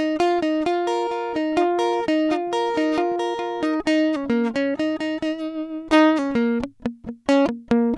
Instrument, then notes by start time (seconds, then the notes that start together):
acoustic guitar
0.00 D#4
0.21 F4
0.44 D#4
0.68 F4
0.88 A#4
1.13 F4
1.38 D#4
1.58 F4
1.80 A#4
2.09 D#4
2.33 F4
2.54 A#4
2.79 D#4
2.99 F4
3.21 A#4
3.40 F4
3.64 D#4
3.88 D#4
4.15 C#4
4.31 A#3
4.57 C#4
4.81 D#4
5.02 D#4
5.24 D#4
5.92 D#4
6.20 C#4
6.37 A#3
7.30 C#4
7.50 A#3
7.72 A#3